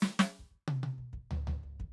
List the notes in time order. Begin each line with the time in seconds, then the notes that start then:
0.00 snare, hi-hat pedal
0.19 snare
0.39 kick
0.51 kick
0.68 high tom
0.83 high tom
0.98 kick
1.13 kick
1.31 floor tom
1.47 floor tom
1.63 kick
1.80 kick